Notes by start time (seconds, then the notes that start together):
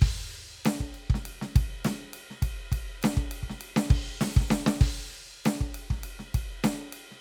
0.01 kick, hi-hat pedal, crash
0.65 snare, hi-hat pedal, ride
0.80 kick
0.94 hi-hat pedal, ride
1.10 kick, crash
1.14 snare
1.26 ride
1.42 snare
1.56 kick, ride
1.84 snare, hi-hat pedal, ride
2.06 kick
2.14 ride
2.30 snare
2.42 kick, hi-hat pedal, ride
2.72 kick, ride
3.02 snare, hi-hat pedal, ride
3.17 kick
3.30 hi-hat pedal, ride
3.43 kick
3.50 snare
3.59 hi-hat pedal, ride
3.76 snare
3.90 kick, ride
4.21 open hi-hat, snare
4.37 kick, snare
4.48 snare
4.51 snare
4.67 snare
4.81 kick, hi-hat pedal, crash
5.27 kick
5.44 snare, hi-hat pedal, ride
5.61 kick
5.75 hi-hat pedal, ride
5.90 kick, snare
5.96 snare
6.00 snare
6.03 snare, hi-hat pedal, ride
6.19 snare
6.34 kick, ride
6.63 snare, hi-hat pedal, ride
6.93 ride
7.11 snare